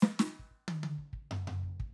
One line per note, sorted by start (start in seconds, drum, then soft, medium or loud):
0.01 snare loud
0.01 hi-hat pedal medium
0.20 snare loud
0.40 kick soft
0.51 kick soft
0.68 high tom loud
0.84 high tom medium
0.99 kick soft
1.14 kick soft
1.31 floor tom loud
1.48 floor tom medium
1.64 kick soft
1.80 kick soft